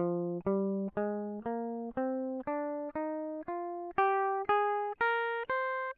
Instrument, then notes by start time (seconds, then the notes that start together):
electric guitar
0.00 F3
0.47 G3
0.98 G#3
1.47 A#3
1.98 C4
2.48 D4
2.96 D#4
3.49 F4
3.99 G4
4.50 G#4
5.01 A#4
5.50 C5